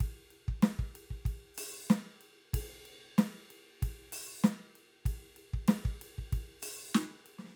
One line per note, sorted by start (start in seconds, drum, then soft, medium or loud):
0.01 kick medium
0.01 ride medium
0.31 ride soft
0.49 kick medium
0.63 snare loud
0.63 ride medium
0.80 kick medium
0.96 ride medium
1.11 kick soft
1.26 kick medium
1.26 ride medium
1.55 open hi-hat loud
1.55 hi-hat pedal soft
1.55 ride loud
1.91 snare loud
1.91 hi-hat pedal medium
1.91 ride medium
2.22 ride soft
2.54 kick medium
2.54 ride loud
2.86 ride soft
3.19 snare loud
3.19 ride medium
3.51 ride medium
3.83 kick medium
3.83 ride medium
4.13 open hi-hat loud
4.13 ride medium
4.44 snare loud
4.44 hi-hat pedal medium
4.44 ride medium
4.76 ride soft
5.06 kick medium
5.06 ride medium
5.37 ride soft
5.54 kick medium
5.69 snare loud
5.69 ride loud
5.86 kick medium
6.02 ride medium
6.19 kick soft
6.33 kick medium
6.33 ride medium
6.60 open hi-hat loud
6.60 hi-hat pedal soft
6.60 ride loud
6.95 snare loud
6.95 hi-hat pedal medium
6.95 ride soft
7.27 ride soft
7.39 snare soft
7.45 snare soft
7.48 snare soft
7.50 snare soft